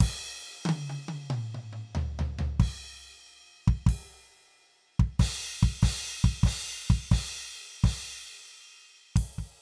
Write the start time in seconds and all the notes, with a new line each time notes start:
0.01 kick, ride, crash
0.66 high tom
0.69 high tom
0.90 high tom
1.09 high tom
1.31 mid tom
1.55 mid tom
1.73 mid tom
1.95 floor tom
2.19 floor tom
2.39 floor tom
2.60 kick, crash
3.68 kick
3.87 kick, crash
5.00 kick
5.20 kick, crash
5.63 kick
5.82 kick, crash
6.25 kick
6.44 kick, crash
6.90 kick
7.12 kick, crash
7.84 kick, crash
9.16 kick, ride
9.39 kick